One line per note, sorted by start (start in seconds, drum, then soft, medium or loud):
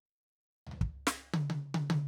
0.67 floor tom medium
0.71 floor tom medium
0.81 kick medium
1.07 snare loud
1.34 high tom loud
1.50 high tom medium
1.74 high tom loud
1.90 high tom loud